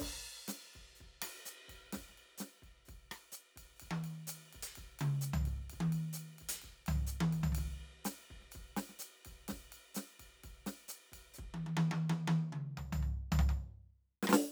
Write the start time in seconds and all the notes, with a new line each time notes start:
0.01 kick, crash
0.07 kick
0.14 cross-stick
0.49 snare, hi-hat pedal, ride
0.74 kick, ride
0.96 hi-hat pedal
1.00 kick, ride
1.06 kick
1.22 cross-stick, ride
1.46 hi-hat pedal, ride
1.69 kick, ride
1.74 kick
1.93 kick, snare, ride
2.01 kick
2.09 snare
2.18 ride
2.38 snare, hi-hat pedal, ride
2.63 kick, ride
2.86 kick, hi-hat pedal, ride
2.94 kick
3.12 cross-stick, ride
3.33 hi-hat pedal, ride
3.57 kick, ride
3.77 hi-hat pedal, ride
3.82 kick
3.87 kick
3.91 high tom
4.05 ride
4.28 hi-hat pedal, ride
4.53 kick, ride
4.60 kick, closed hi-hat
4.73 hi-hat pedal, ride
4.78 kick
5.00 mid tom, ride
5.22 hi-hat pedal, ride
5.34 floor tom
5.46 kick, ride
5.53 kick
5.70 kick, ride
5.79 kick, high tom
5.93 ride
6.14 hi-hat pedal
6.18 ride
6.39 kick, ride
6.50 closed hi-hat
6.57 hi-hat pedal
6.62 kick, ride
6.69 kick
6.87 floor tom, ride
7.07 hi-hat pedal
7.12 ride
7.21 high tom
7.33 kick, ride
7.39 kick
7.44 floor tom
7.51 floor tom, hi-hat pedal
7.56 kick, ride
7.65 kick
7.82 ride
8.05 snare, hi-hat pedal, ride
8.31 kick
8.36 kick
8.41 snare
8.52 kick, hi-hat pedal, ride
8.77 snare, ride
8.90 snare
9.00 hi-hat pedal, ride
9.26 kick, ride
9.32 kick
9.49 kick, snare, ride
9.56 kick
9.73 ride
9.95 snare, hi-hat pedal, ride
10.20 kick, ride
10.44 kick, ride
10.67 snare, ride
10.89 hi-hat pedal, ride
11.13 kick, ride
11.34 hi-hat pedal
11.39 kick
11.45 kick
11.55 high tom
11.67 high tom
11.77 high tom
11.92 high tom
12.10 high tom
12.28 high tom
12.53 mid tom
12.78 floor tom
12.93 floor tom
13.03 floor tom
13.33 floor tom
13.40 floor tom
13.50 floor tom
14.23 snare
14.28 cross-stick, snare
14.33 snare